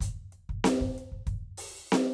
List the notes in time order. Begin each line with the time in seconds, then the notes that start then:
0.01 closed hi-hat, kick
0.33 closed hi-hat
0.50 kick
0.65 closed hi-hat, snare
0.81 kick
0.98 closed hi-hat
1.12 kick
1.27 kick, closed hi-hat
1.58 open hi-hat
1.91 snare, hi-hat pedal